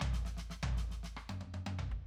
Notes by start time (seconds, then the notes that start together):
0.00 cross-stick, floor tom
0.13 snare
0.25 snare
0.37 snare
0.50 snare
0.63 floor tom
0.77 snare
0.90 snare
1.03 snare
1.16 cross-stick
1.29 closed hi-hat, high tom
1.41 high tom
1.54 high tom
1.66 high tom
1.79 floor tom
1.91 kick